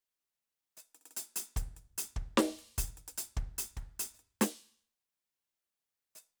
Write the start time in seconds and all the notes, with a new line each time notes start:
0.77 hi-hat pedal
0.95 closed hi-hat
1.01 closed hi-hat
1.06 closed hi-hat
1.11 closed hi-hat
1.17 closed hi-hat
1.36 closed hi-hat
1.56 kick, closed hi-hat
1.77 closed hi-hat
1.98 closed hi-hat
2.16 kick, closed hi-hat
2.37 snare
2.59 closed hi-hat
2.78 closed hi-hat, kick
2.88 closed hi-hat
2.97 closed hi-hat
3.08 closed hi-hat
3.18 closed hi-hat
3.37 kick, closed hi-hat
3.58 closed hi-hat
3.77 kick, closed hi-hat
3.99 closed hi-hat
4.14 hi-hat pedal
4.19 closed hi-hat
4.41 closed hi-hat, snare
6.15 hi-hat pedal